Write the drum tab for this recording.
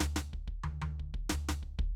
SD |oo------oo--|
T1 |----oo------|
FT |oo--oo--oo--|
BD |--oo--oo--oo|